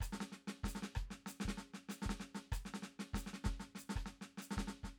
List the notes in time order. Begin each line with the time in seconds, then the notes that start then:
0.01 kick, cross-stick, hi-hat pedal
0.13 snare
0.21 snare
0.32 snare
0.48 snare
0.64 kick, snare
0.69 hi-hat pedal
0.76 snare
0.83 snare
0.96 kick, cross-stick
1.11 snare
1.27 snare, hi-hat pedal
1.41 snare
1.45 kick, snare
1.58 snare
1.74 snare
1.89 snare, hi-hat pedal
2.02 kick, snare
2.10 snare
2.20 snare
2.35 snare
2.52 kick, cross-stick, hi-hat pedal
2.66 snare
2.74 snare
2.83 snare
3.00 snare
3.14 kick, snare, hi-hat pedal
3.27 snare
3.34 snare
3.45 kick, snare
3.53 kick
3.60 snare
3.76 snare, hi-hat pedal
3.90 snare
3.96 kick, cross-stick
4.06 snare
4.22 snare
4.38 snare
4.42 hi-hat pedal
4.51 snare
4.58 kick, snare
4.68 snare
4.84 kick, snare